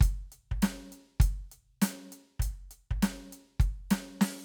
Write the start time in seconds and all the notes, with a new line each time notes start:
0.01 kick, closed hi-hat
0.32 closed hi-hat
0.52 kick
0.62 snare, closed hi-hat
0.92 closed hi-hat
1.20 kick, closed hi-hat
1.52 closed hi-hat
1.82 closed hi-hat, snare
2.12 closed hi-hat
2.40 kick, closed hi-hat
2.71 closed hi-hat
2.91 kick
3.03 snare, closed hi-hat
3.33 closed hi-hat
3.60 kick, closed hi-hat
3.91 snare, closed hi-hat
4.21 snare, open hi-hat